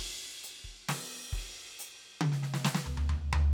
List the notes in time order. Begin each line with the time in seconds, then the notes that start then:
0.44 closed hi-hat
0.65 kick
0.89 snare, crash
1.33 kick, ride
1.79 open hi-hat, hi-hat pedal
2.21 high tom
2.32 snare
2.43 snare
2.54 snare
2.65 snare
2.75 snare
2.86 floor tom
2.98 floor tom
3.10 floor tom
3.33 floor tom